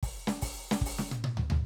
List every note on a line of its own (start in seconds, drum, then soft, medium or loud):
0.03 open hi-hat loud
0.03 kick medium
0.27 snare medium
0.41 open hi-hat loud
0.41 kick medium
0.71 snare loud
0.81 kick medium
0.86 open hi-hat loud
0.98 snare medium
1.11 hi-hat pedal soft
1.11 high tom loud
1.24 high tom loud
1.37 floor tom loud
1.50 floor tom loud